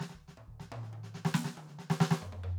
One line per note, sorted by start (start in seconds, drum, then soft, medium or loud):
0.01 snare medium
0.10 snare soft
0.15 kick soft
0.28 snare soft
0.38 mid tom soft
0.48 kick soft
0.60 snare soft
0.72 mid tom medium
0.84 snare soft
0.93 high tom soft
1.04 snare soft
1.15 snare soft
1.25 snare medium
1.35 snare loud
1.45 snare medium
1.58 high tom medium
1.68 snare soft
1.79 snare soft
1.90 snare loud
2.01 snare loud
2.11 snare loud
2.23 floor tom medium
2.33 floor tom medium
2.44 floor tom soft